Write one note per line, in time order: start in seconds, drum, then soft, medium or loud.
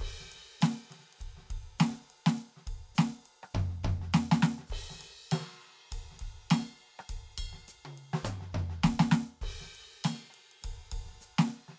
0.01 kick medium
0.01 crash medium
0.07 kick soft
0.21 snare soft
0.28 snare soft
0.32 snare soft
0.32 ride medium
0.35 snare soft
0.62 snare loud
0.62 hi-hat pedal loud
0.62 ride loud
0.91 snare soft
0.91 ride medium
1.00 snare soft
1.14 ride soft
1.19 kick soft
1.19 hi-hat pedal soft
1.19 ride medium
1.38 snare soft
1.44 snare soft
1.51 kick medium
1.51 ride medium
1.58 kick soft
1.80 snare loud
1.80 hi-hat pedal medium
1.80 ride loud
1.91 snare soft
2.11 ride medium
2.27 snare loud
2.37 hi-hat pedal soft
2.37 ride medium
2.58 snare soft
2.68 kick soft
2.68 ride medium
2.74 kick soft
2.78 kick soft
2.96 snare loud
2.96 hi-hat pedal medium
2.96 ride loud
3.24 hi-hat pedal soft
3.24 ride medium
3.44 cross-stick medium
3.51 hi-hat pedal soft
3.55 kick soft
3.55 floor tom loud
3.62 kick soft
3.71 snare soft
3.85 kick medium
3.85 floor tom loud
3.92 kick soft
4.03 snare soft
4.14 snare loud
4.14 hi-hat pedal loud
4.33 snare loud
4.40 snare loud
4.40 hi-hat pedal soft
4.59 snare soft
4.68 kick medium
4.68 hi-hat pedal soft
4.73 crash medium
4.78 kick soft
4.91 snare soft
5.00 snare soft
5.00 ride medium
5.33 snare loud
5.33 hi-hat pedal medium
5.33 ride bell loud
5.41 snare soft
5.62 hi-hat pedal soft
5.62 ride soft
5.80 ride soft
5.92 kick soft
5.92 hi-hat pedal medium
5.92 ride loud
5.99 kick soft
6.02 kick soft
6.12 snare soft
6.16 snare soft
6.21 kick soft
6.21 snare soft
6.21 ride medium
6.31 kick soft
6.52 snare loud
6.52 hi-hat pedal medium
6.52 ride bell loud
6.60 snare soft
6.81 hi-hat pedal soft
6.81 ride soft
7.00 cross-stick medium
7.10 kick soft
7.10 hi-hat pedal medium
7.10 ride loud
7.16 kick soft
7.19 kick soft
7.30 snare soft
7.39 kick soft
7.39 ride bell loud
7.46 kick soft
7.49 kick soft
7.54 snare soft
7.69 hi-hat pedal medium
7.69 ride medium
7.86 high tom medium
7.99 ride medium
8.14 snare loud
8.24 kick soft
8.24 hi-hat pedal loud
8.24 mid tom loud
8.42 snare soft
8.54 kick soft
8.54 floor tom loud
8.59 kick soft
8.71 snare soft
8.84 kick soft
8.84 snare loud
9.01 snare loud
9.13 snare loud
9.43 kick medium
9.43 crash medium
9.49 kick soft
9.53 kick soft
9.62 snare soft
9.66 cross-stick soft
9.76 ride medium
10.05 snare loud
10.05 hi-hat pedal medium
10.05 ride bell loud
10.13 snare soft
10.31 cross-stick soft
10.35 cross-stick soft
10.35 ride medium
10.53 ride soft
10.63 kick soft
10.63 hi-hat pedal soft
10.63 ride loud
10.72 kick soft
10.93 kick medium
10.93 ride loud
11.00 kick soft
11.04 kick soft
11.04 snare soft
11.13 snare soft
11.22 hi-hat pedal medium
11.22 ride medium
11.40 snare loud
11.46 snare soft
11.46 hi-hat pedal soft
11.52 ride soft
11.69 snare soft